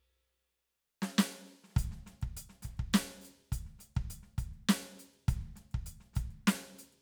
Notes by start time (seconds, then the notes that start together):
1.02 snare
1.18 snare
1.32 snare
1.45 hi-hat pedal
1.64 snare
1.67 snare
1.70 snare
1.74 closed hi-hat, kick, snare
1.91 snare
2.06 snare, closed hi-hat
2.22 kick, closed hi-hat
2.37 closed hi-hat
2.49 snare
2.62 closed hi-hat, kick, snare
2.77 kick, closed hi-hat
2.93 closed hi-hat, snare
3.21 closed hi-hat, hi-hat pedal
3.37 closed hi-hat
3.52 closed hi-hat, kick
3.66 snare
3.79 closed hi-hat, snare
3.95 kick, closed hi-hat
4.10 closed hi-hat
4.23 snare
4.38 closed hi-hat, kick
4.54 closed hi-hat
4.69 closed hi-hat, snare
4.99 closed hi-hat
5.13 closed hi-hat
5.28 closed hi-hat, kick
5.39 snare
5.56 snare, closed hi-hat
5.71 kick, closed hi-hat
5.86 closed hi-hat
6.00 snare
6.13 closed hi-hat, kick, snare
6.31 closed hi-hat
6.47 closed hi-hat, snare
6.55 snare
6.79 closed hi-hat
6.92 closed hi-hat